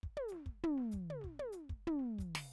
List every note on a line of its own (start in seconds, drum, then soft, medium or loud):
0.04 kick soft
0.17 high tom medium
0.29 snare soft
0.29 hi-hat pedal medium
0.47 kick soft
0.64 floor tom medium
0.78 snare soft
0.92 kick soft
0.92 snare soft
0.92 hi-hat pedal medium
1.10 high tom medium
1.22 kick soft
1.22 snare soft
1.40 high tom medium
1.53 snare soft
1.53 hi-hat pedal medium
1.70 kick soft
1.87 floor tom medium
2.00 snare soft
2.19 kick soft
2.19 hi-hat pedal medium
2.36 snare medium
2.36 ride medium